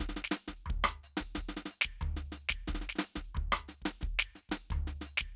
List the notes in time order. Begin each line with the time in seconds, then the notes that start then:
0.01 kick, snare
0.10 snare
0.17 snare
0.25 snare
0.32 snare
0.36 hi-hat pedal
0.48 kick, snare
0.67 floor tom
0.71 kick
0.85 cross-stick
1.04 hi-hat pedal
1.18 kick, snare
1.36 kick, snare
1.49 snare
1.57 snare
1.66 snare
1.71 hi-hat pedal
1.82 kick, snare
2.02 kick, floor tom
2.17 snare
2.33 snare, hi-hat pedal
2.50 kick, snare
2.68 kick, snare
2.75 snare
2.82 snare
2.90 snare
2.96 snare
2.99 snare
3.04 hi-hat pedal
3.16 kick, snare
3.35 kick, floor tom
3.53 cross-stick
3.69 snare, hi-hat pedal
3.83 kick, snare
4.02 kick, snare
4.20 snare
4.36 snare, hi-hat pedal
4.50 kick, snare
4.71 kick, floor tom
4.88 snare
5.02 snare
5.06 hi-hat pedal
5.18 kick, snare